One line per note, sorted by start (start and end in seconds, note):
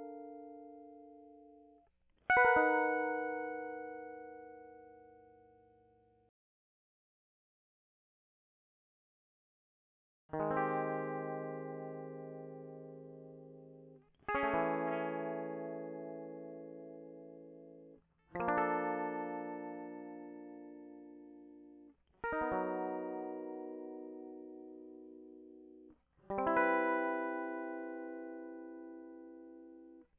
2.30 5.25 F#5
2.37 5.37 B4
2.45 6.51 A#4
2.57 5.99 D#4
10.34 14.11 D#3
10.40 14.02 G#3
10.51 14.00 C4
10.57 13.83 G4
14.29 16.91 G#4
14.35 17.98 C#4
14.44 18.01 A3
14.55 17.98 E3
18.36 21.91 F3
18.40 21.93 A#3
18.48 21.93 D4
18.58 20.37 A4
22.24 24.64 A#4
22.33 25.95 D#4
22.42 25.96 B3
22.52 25.93 F#3
26.31 30.01 G3
26.38 30.06 C4
26.47 30.04 E4
26.57 29.69 B4